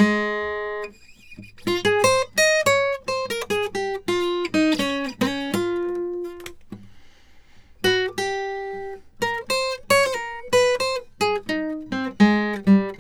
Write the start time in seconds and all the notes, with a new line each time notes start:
0.00 G#3
1.86 G#4
2.05 C5
2.39 D#5
2.67 C#5
3.09 C5
3.31 A#4
3.51 G#4
3.76 G4
4.09 F4
4.55 D#4
4.81 C#4
5.22 C#4
5.55 F4
7.85 F#4
8.19 G4
9.23 A#4
9.51 C5
9.91 C#5
10.07 C5
10.16 A#4
10.54 B4
10.81 C5
11.22 G#4
11.50 D#4
11.93 C4
12.21 G#3
12.68 G3